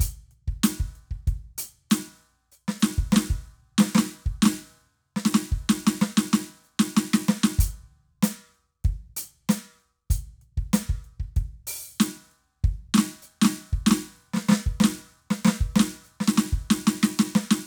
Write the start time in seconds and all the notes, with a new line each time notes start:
0.01 closed hi-hat, kick
0.32 closed hi-hat
0.49 kick
0.65 closed hi-hat, snare
0.81 kick
0.96 closed hi-hat
1.12 kick
1.28 kick, closed hi-hat
1.59 open hi-hat
1.91 closed hi-hat, snare, hi-hat pedal
2.53 hi-hat pedal
2.69 snare
2.81 snare, hi-hat pedal
2.99 kick
3.12 snare, hi-hat pedal
3.17 snare
3.31 kick
3.79 snare
3.81 snare
3.96 snare
3.99 snare
4.27 kick
4.43 snare
4.47 snare
5.17 snare
5.26 snare
5.35 snare
5.53 kick
5.70 snare
5.88 snare
5.98 hi-hat pedal
6.03 snare
6.18 snare
6.33 snare, hi-hat pedal
6.65 hi-hat pedal
6.80 snare
6.98 snare
7.15 snare
7.30 snare
7.45 snare
7.60 closed hi-hat, kick
8.24 closed hi-hat, snare
8.56 closed hi-hat
8.85 kick, closed hi-hat
9.18 open hi-hat
9.50 closed hi-hat, snare, hi-hat pedal
9.81 closed hi-hat
10.11 closed hi-hat, kick
10.43 closed hi-hat
10.58 kick
10.74 closed hi-hat, snare
10.90 kick
11.05 closed hi-hat
11.21 kick
11.37 kick, closed hi-hat
11.68 open hi-hat
12.01 closed hi-hat, snare, hi-hat pedal
12.32 closed hi-hat
12.65 kick
12.95 snare
12.99 snare
13.23 hi-hat pedal
13.43 snare
13.46 snare
13.74 kick
13.88 snare
13.92 snare
14.35 snare
14.38 snare
14.50 snare
14.53 snare
14.67 kick
14.81 snare
14.85 snare
15.32 snare
15.44 snare, hi-hat pedal
15.49 snare
15.62 kick
15.77 snare
15.81 snare
16.05 hi-hat pedal
16.21 snare
16.29 snare
16.37 snare, hi-hat pedal
16.54 kick
16.71 snare
16.88 snare
17.04 snare
17.20 snare
17.36 snare
17.52 snare